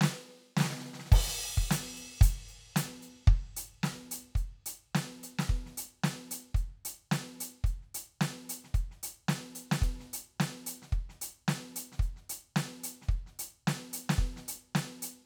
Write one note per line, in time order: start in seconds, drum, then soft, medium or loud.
0.02 snare loud
0.04 snare loud
0.42 snare soft
0.57 snare loud
0.60 snare loud
0.63 snare medium
0.65 snare medium
0.76 snare soft
0.79 snare medium
0.84 snare soft
0.88 snare soft
0.93 snare medium
0.99 snare medium
1.05 snare soft
1.11 kick loud
1.11 snare soft
1.11 crash loud
1.27 snare soft
1.40 closed hi-hat soft
1.57 kick medium
1.71 closed hi-hat loud
1.71 snare loud
1.96 closed hi-hat medium
2.21 closed hi-hat loud
2.21 kick loud
2.48 closed hi-hat soft
2.76 closed hi-hat loud
2.76 snare loud
3.02 closed hi-hat soft
3.27 kick loud
3.57 closed hi-hat loud
3.83 snare loud
4.11 closed hi-hat loud
4.35 closed hi-hat soft
4.35 kick medium
4.66 closed hi-hat loud
4.95 snare loud
5.23 closed hi-hat medium
5.39 snare loud
5.49 kick medium
5.66 snare soft
5.77 closed hi-hat loud
6.04 snare loud
6.31 closed hi-hat loud
6.55 closed hi-hat soft
6.55 kick medium
6.76 snare soft
6.85 closed hi-hat loud
7.11 snare loud
7.40 closed hi-hat loud
7.64 closed hi-hat soft
7.64 kick medium
7.82 snare soft
7.95 closed hi-hat loud
8.21 snare loud
8.49 closed hi-hat loud
8.64 snare soft
8.74 closed hi-hat soft
8.74 kick medium
8.91 snare soft
9.03 closed hi-hat loud
9.28 snare loud
9.55 closed hi-hat medium
9.71 snare loud
9.82 kick medium
9.82 closed hi-hat medium
10.00 snare soft
10.07 snare soft
10.13 closed hi-hat loud
10.40 snare loud
10.66 closed hi-hat loud
10.82 snare soft
10.92 kick medium
10.92 closed hi-hat soft
11.09 snare soft
11.21 closed hi-hat loud
11.48 snare loud
11.76 closed hi-hat loud
11.92 snare soft
11.99 closed hi-hat soft
11.99 kick medium
12.16 snare soft
12.30 closed hi-hat loud
12.56 snare loud
12.84 closed hi-hat loud
13.02 snare soft
13.09 kick medium
13.09 closed hi-hat soft
13.26 snare soft
13.39 closed hi-hat loud
13.67 snare loud
13.93 closed hi-hat loud
14.09 snare loud
14.18 kick medium
14.18 closed hi-hat soft
14.36 snare soft
14.48 closed hi-hat loud
14.75 snare loud
15.02 closed hi-hat loud